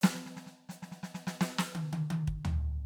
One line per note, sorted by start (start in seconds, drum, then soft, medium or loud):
0.01 snare loud
0.01 hi-hat pedal medium
0.15 snare soft
0.26 snare soft
0.36 snare soft
0.46 snare soft
0.69 snare soft
0.69 hi-hat pedal medium
0.82 snare soft
0.92 snare soft
1.03 snare soft
1.14 snare soft
1.27 snare medium
1.41 snare loud
1.58 snare loud
1.75 high tom loud
1.93 closed hi-hat soft
1.93 high tom loud
2.10 high tom loud
2.28 kick soft
2.45 floor tom loud